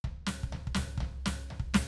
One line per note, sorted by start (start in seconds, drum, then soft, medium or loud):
0.04 kick medium
0.04 floor tom medium
0.27 snare medium
0.27 floor tom medium
0.43 kick medium
0.52 floor tom loud
0.67 kick medium
0.75 snare loud
0.75 floor tom loud
0.97 kick medium
0.97 floor tom loud
1.26 snare loud
1.26 floor tom loud
1.50 floor tom medium
1.60 kick medium
1.74 snare loud
1.74 floor tom loud